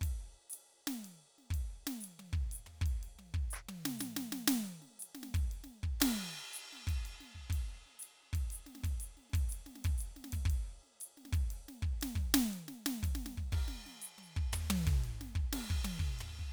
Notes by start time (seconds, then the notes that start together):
0.01 kick, ride
0.50 hi-hat pedal, ride
0.87 snare, ride
1.04 ride
1.38 snare
1.50 kick, ride
1.87 snare, ride
2.00 hi-hat pedal, ride
2.19 high tom
2.33 kick
2.51 hi-hat pedal, ride
2.66 floor tom
2.81 kick
2.86 ride
3.03 ride
3.19 high tom
3.34 kick
3.50 percussion, hi-hat pedal
3.69 high tom
3.85 snare
3.99 snare, hi-hat pedal
4.16 snare
4.32 snare
4.47 snare, ride
4.82 snare
4.90 snare
4.99 hi-hat pedal, ride
5.15 snare
5.23 snare
5.34 kick, ride
5.51 ride
5.64 snare
5.83 kick
6.00 snare, crash
6.53 hi-hat pedal, ride
6.72 snare
6.87 kick, ride
7.05 ride
7.20 snare
7.35 kick
7.50 kick, ride
7.67 snare
7.86 snare
7.99 hi-hat pedal, ride
8.23 snare
8.33 kick, ride
8.50 hi-hat pedal, ride
8.66 snare
8.75 snare
8.81 kick, snare, ride
9.00 hi-hat pedal, ride
9.17 snare
9.30 kick, snare
9.35 ride
9.49 hi-hat pedal, ride
9.66 snare
9.75 snare
9.84 kick, ride
9.98 hi-hat pedal, ride
10.16 snare
10.24 snare
10.32 kick, ride
10.45 kick
10.50 ride
10.83 snare
11.00 hi-hat pedal, ride
11.17 snare
11.25 snare
11.32 kick, ride
11.50 ride
11.68 snare
11.82 kick
12.01 snare, ride
12.15 kick
12.34 snare, ride
12.53 ride
12.68 snare
12.86 snare
13.03 kick, ride
13.15 snare
13.26 snare
13.37 kick
13.52 kick, crash
13.68 snare
13.86 snare
14.02 hi-hat pedal, ride
14.18 high tom
14.23 hi-hat pedal
14.36 kick
14.53 floor tom, hi-hat pedal
14.61 closed hi-hat
14.63 closed hi-hat
14.70 high tom
14.87 kick, ride
15.04 ride
15.21 snare
15.35 kick
15.53 snare, crash
15.70 kick
15.84 high tom, ride
15.99 kick
16.19 floor tom, ride
16.39 kick